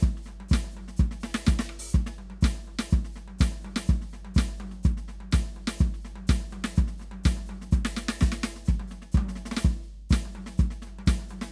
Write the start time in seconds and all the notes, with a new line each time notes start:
0.01 kick, hi-hat pedal
0.05 high tom
0.17 snare
0.23 snare, hi-hat pedal
0.29 high tom
0.41 high tom
0.49 kick, hi-hat pedal
0.54 snare
0.65 high tom
0.72 hi-hat pedal
0.77 high tom
0.88 snare
0.97 kick, hi-hat pedal
1.01 high tom
1.11 snare
1.21 snare, hi-hat pedal
1.35 snare
1.45 kick, snare, hi-hat pedal
1.59 snare
1.70 cross-stick
1.80 open hi-hat
1.92 kick, snare, hi-hat pedal
2.07 snare
2.15 hi-hat pedal, high tom
2.30 high tom
2.42 kick, snare, hi-hat pedal
2.56 high tom
2.64 hi-hat pedal, high tom
2.79 snare
2.90 kick, hi-hat pedal, high tom
3.05 snare
3.13 snare, hi-hat pedal
3.17 high tom
3.28 high tom
3.39 kick, snare, hi-hat pedal
3.52 high tom
3.62 hi-hat pedal, high tom
3.76 snare
3.87 kick, hi-hat pedal, high tom
4.02 snare
4.10 snare, hi-hat pedal
4.14 high tom
4.25 high tom
4.35 kick, snare, hi-hat pedal
4.49 high tom
4.57 hi-hat pedal, high tom
4.71 snare
4.84 kick, hi-hat pedal, high tom
4.98 snare
5.07 snare, hi-hat pedal, high tom
5.21 high tom
5.32 kick, snare, hi-hat pedal
5.45 high tom
5.54 hi-hat pedal, high tom
5.68 snare
5.79 kick, hi-hat pedal
5.83 high tom
5.94 snare
6.01 hi-hat pedal
6.05 snare, high tom
6.16 high tom
6.28 kick, snare, hi-hat pedal
6.41 high tom
6.51 hi-hat pedal, high tom
6.64 snare
6.76 kick, hi-hat pedal, high tom
6.88 snare
6.98 snare, hi-hat pedal, high tom
7.12 high tom
7.24 kick, snare, hi-hat pedal
7.37 high tom
7.46 hi-hat pedal, high tom
7.62 snare
7.72 kick, hi-hat pedal, high tom
7.85 snare
7.95 snare, hi-hat pedal
8.09 snare
8.19 snare, hi-hat pedal
8.23 kick
8.32 snare
8.42 snare, hi-hat pedal
8.56 snare
8.65 kick, snare, hi-hat pedal
8.80 high tom
8.88 snare, hi-hat pedal
9.02 snare
9.12 kick, hi-hat pedal
9.18 high tom
9.29 snare
9.36 snare
9.46 snare
9.52 snare
9.57 snare
9.61 kick, hi-hat pedal
9.83 hi-hat pedal
10.10 kick, snare, hi-hat pedal
10.26 high tom
10.32 hi-hat pedal, high tom
10.47 snare
10.58 kick, hi-hat pedal, high tom
10.71 snare
10.80 snare, hi-hat pedal
10.88 high tom
10.99 high tom
11.07 kick, snare, hi-hat pedal
11.20 high tom
11.29 hi-hat pedal, high tom
11.42 snare